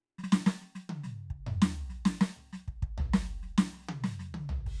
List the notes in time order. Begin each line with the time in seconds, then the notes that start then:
0.19 snare
0.24 snare
0.33 snare
0.47 snare
0.62 snare
0.76 snare
0.90 high tom
1.04 snare
1.30 kick
1.47 mid tom
1.62 snare
1.90 snare
2.06 snare
2.21 snare
2.37 floor tom
2.53 snare
2.68 kick
2.83 kick
2.98 floor tom
3.14 snare
3.25 snare
3.43 snare
3.58 snare
3.73 snare
3.79 snare
3.83 snare
3.89 high tom
4.04 snare
4.20 snare
4.35 high tom
4.50 floor tom
4.67 kick, crash